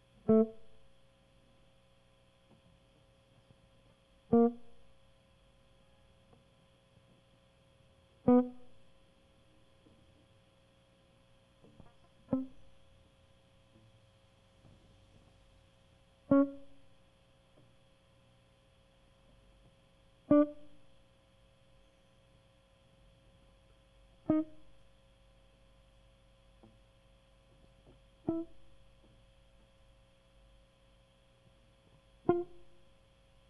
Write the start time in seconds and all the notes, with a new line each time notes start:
0.30 A3
4.34 A#3
8.29 B3
12.34 C4
16.32 C#4
20.32 D4
24.31 D#4
28.29 E4
32.30 F4